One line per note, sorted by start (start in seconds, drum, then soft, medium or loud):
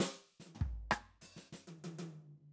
0.00 snare loud
0.40 snare soft
0.46 high tom soft
0.55 floor tom medium
0.61 kick medium
0.91 cross-stick medium
1.21 snare soft
1.21 hi-hat pedal medium
1.36 snare soft
1.52 snare soft
1.67 high tom medium
1.84 high tom medium
1.99 closed hi-hat soft
1.99 high tom loud